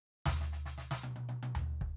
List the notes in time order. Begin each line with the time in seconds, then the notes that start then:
0.26 snare, floor tom
0.41 snare
0.52 snare
0.66 snare
0.78 snare
0.91 snare
1.03 high tom
1.16 high tom
1.29 high tom
1.43 high tom
1.55 floor tom
1.81 kick